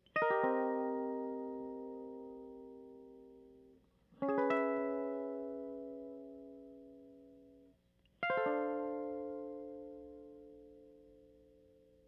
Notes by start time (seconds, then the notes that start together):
0.17 D#5
0.23 A#4
0.31 G4
0.45 C4
4.23 C#4
4.29 G#4
4.39 B4
4.51 E5
8.24 F5
8.31 C5
8.38 A4
8.47 D4